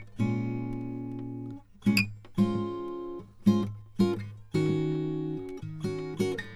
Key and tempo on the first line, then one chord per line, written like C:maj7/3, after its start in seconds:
A# minor, 110 BPM
0.00 F:min7(4,*5)/4
0.41 A#:min11
4.78 D#:min7(4)/4